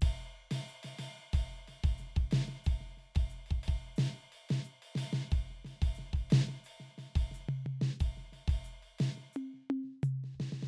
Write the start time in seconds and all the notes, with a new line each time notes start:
0.01 kick, hi-hat pedal, ride
0.51 snare, ride
0.68 hi-hat pedal
0.83 snare, ride
0.99 snare, ride
1.16 snare
1.19 snare
1.33 kick, hi-hat pedal, ride
1.51 snare
1.68 snare, ride
1.84 kick, ride
1.98 snare, hi-hat pedal
2.16 kick, ride
2.31 snare, ride
2.48 snare
2.64 kick, hi-hat pedal, ride
2.81 snare
2.97 snare, ride
3.15 kick, ride
3.30 hi-hat pedal
3.46 ride
3.51 kick
3.63 ride
3.68 kick
3.96 snare, hi-hat pedal, ride
4.15 snare
4.32 ride
4.49 snare, ride
4.64 hi-hat pedal
4.82 ride
4.95 snare, ride
5.13 snare
5.31 kick, hi-hat pedal, ride
5.51 snare
5.65 snare, ride
5.82 kick, ride
5.95 snare, hi-hat pedal
6.13 kick, ride
6.30 snare, ride
6.49 snare
6.64 hi-hat pedal, ride
6.80 snare
6.98 snare, ride
7.16 kick, ride
7.31 snare, hi-hat pedal
7.49 floor tom
7.66 floor tom
7.82 snare
8.00 kick, hi-hat pedal, ride
8.17 snare
8.33 snare, ride
8.48 kick, ride
8.64 hi-hat pedal
8.83 ride
8.99 snare, ride
9.18 snare
9.33 hi-hat pedal, high tom
9.53 snare
9.70 high tom
9.84 snare
10.03 floor tom, hi-hat pedal
10.24 snare
10.34 kick
10.40 snare
10.52 snare
10.63 snare